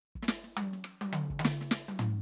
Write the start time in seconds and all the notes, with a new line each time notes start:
0.15 kick
0.23 snare
0.28 snare
0.44 snare
0.57 high tom
0.73 snare
0.84 cross-stick
1.01 high tom
1.13 mid tom
1.30 kick
1.39 mid tom
1.45 snare
1.61 snare
1.71 snare
1.88 high tom
1.99 floor tom